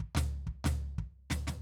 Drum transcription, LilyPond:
\new DrumStaff \drummode { \time 4/4 \tempo 4 = 122 \tuplet 3/2 { bd8 <tomfh sn>8 r8 bd8 <tomfh sn>8 r8 bd8 r8 <tomfh sn>8 } <sn tomfh>4 | }